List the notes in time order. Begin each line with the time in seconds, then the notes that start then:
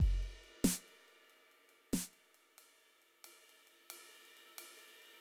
0.00 kick, ride
0.23 ride
0.44 ride
0.64 snare, ride
0.88 ride
1.08 ride
1.30 ride
1.51 ride
1.69 ride
1.93 snare, ride
2.13 ride
2.34 ride
2.58 ride
2.80 ride
3.02 ride
3.24 ride
3.49 ride
3.59 ride
3.67 ride
3.90 ride
4.15 ride
4.25 ride
4.37 ride
4.58 ride
4.79 ride
5.02 ride